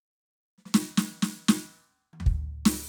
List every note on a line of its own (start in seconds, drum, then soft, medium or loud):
0.58 snare soft
0.66 snare soft
0.70 snare soft
0.75 snare loud
0.98 snare loud
1.23 snare medium
1.49 snare loud
2.14 high tom soft
2.21 floor tom medium
2.27 kick medium
2.66 open hi-hat loud
2.66 snare loud